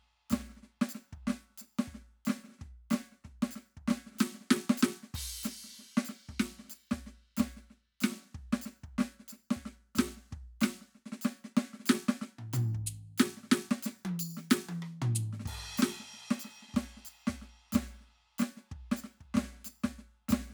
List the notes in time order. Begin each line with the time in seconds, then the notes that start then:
0.31 kick, snare, percussion
0.33 snare
0.40 snare
0.44 snare
0.50 snare
0.57 snare
0.63 snare
0.82 snare
0.90 percussion
0.95 snare
1.13 kick
1.28 snare
1.30 snare
1.50 snare
1.58 snare, percussion
1.79 snare
1.88 kick
1.95 snare
2.26 snare, percussion
2.30 snare
2.39 snare
2.45 snare
2.52 snare
2.60 kick, snare
2.91 snare, percussion
2.94 snare
3.12 snare
3.25 kick, snare
3.43 snare
3.52 percussion
3.56 snare
3.78 kick
3.88 snare
3.91 snare
4.07 snare
4.12 snare
4.16 snare, percussion
4.21 snare
4.35 snare
4.41 snare
4.46 snare
4.51 snare
4.57 snare
4.70 snare
4.78 percussion
4.83 snare
5.04 snare
5.15 kick, crash
5.44 snare, percussion
5.65 snare
5.69 snare
5.72 snare
5.75 snare
5.79 snare
5.98 snare
6.06 percussion
6.10 snare
6.29 kick, snare
6.40 snare
6.60 snare
6.65 snare
6.69 snare, percussion
6.73 snare
6.92 kick, snare
7.07 snare
7.37 kick, snare, percussion
7.40 snare
7.57 snare
7.71 snare
8.01 snare, percussion
8.04 snare
8.17 snare
8.21 snare
8.27 snare
8.33 kick, snare
8.36 snare
8.53 snare
8.62 percussion
8.66 snare
8.84 kick
8.99 snare
9.01 snare
9.20 snare
9.29 percussion
9.33 snare
9.51 snare
9.57 kick
9.66 snare
9.96 kick, snare, percussion
9.99 snare
10.07 snare
10.10 snare
10.17 snare
10.26 snare
10.32 kick, snare
10.62 snare, percussion
10.64 snare
10.82 snare
10.95 snare
11.06 snare
11.13 snare
11.22 snare, percussion
11.45 snare
11.58 snare
11.74 snare
11.80 snare
11.85 snare, percussion
11.90 snare
11.95 snare
12.09 snare
12.22 snare
12.39 floor tom
12.54 floor tom, percussion
12.75 kick
12.87 floor tom
13.19 snare, percussion
13.38 snare
13.44 snare
13.49 snare
13.52 snare
13.72 snare
13.83 snare, percussion
14.06 high tom
14.20 percussion
14.38 snare
14.51 snare, percussion
14.69 high tom
14.83 high tom
15.03 floor tom
15.16 floor tom
15.33 snare
15.40 snare
15.45 kick, snare, ride
15.78 snare, percussion
15.83 snare
16.00 snare
16.14 snare
16.31 snare
16.40 percussion
16.45 snare
16.63 snare
16.69 snare
16.73 kick, snare
16.77 snare
16.97 snare
17.06 percussion
17.28 kick, snare
17.42 snare
17.73 kick, snare, percussion
17.76 snare
17.82 snare
17.86 snare
17.94 snare
18.01 snare
18.08 snare
18.39 snare, percussion
18.42 snare
18.57 snare
18.72 kick, snare
18.92 snare
18.97 percussion
19.04 snare
19.21 kick
19.35 kick, snare
19.38 snare
19.44 snare
19.47 snare
19.51 snare
19.56 snare
19.60 snare
19.65 snare, percussion
19.84 kick, snare
19.99 snare
20.29 kick, snare, percussion
20.33 snare
20.41 snare
20.46 snare
20.50 snare